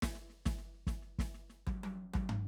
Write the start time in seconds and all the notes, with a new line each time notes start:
0.02 kick, snare
0.15 snare
0.30 snare
0.46 kick, snare
0.58 snare
0.74 snare
0.87 kick, snare
1.02 snare
1.19 kick, snare
1.34 snare
1.50 snare
1.67 kick, high tom
1.83 high tom
2.14 kick, high tom
2.29 floor tom